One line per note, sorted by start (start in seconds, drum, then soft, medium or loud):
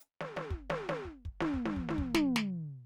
0.00 hi-hat pedal medium
0.21 snare medium
0.21 high tom medium
0.36 snare medium
0.36 high tom medium
0.50 kick soft
0.69 snare medium
0.69 high tom medium
0.88 snare medium
0.88 high tom medium
1.05 kick soft
1.25 kick soft
1.40 snare medium
1.40 floor tom loud
1.54 kick soft
1.65 snare medium
1.65 floor tom medium
1.76 kick soft
1.89 snare medium
1.89 floor tom medium
1.98 kick soft
2.14 snare loud
2.14 floor tom loud
2.36 snare loud